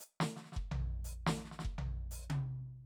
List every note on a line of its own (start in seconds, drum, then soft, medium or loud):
0.00 hi-hat pedal medium
0.20 snare medium
0.36 snare soft
0.41 snare soft
0.44 snare soft
0.52 snare soft
0.56 kick medium
0.71 floor tom loud
1.04 hi-hat pedal medium
1.27 snare loud
1.37 snare soft
1.44 snare soft
1.51 snare soft
1.59 snare soft
1.65 kick soft
1.78 floor tom medium
2.11 hi-hat pedal medium
2.30 high tom loud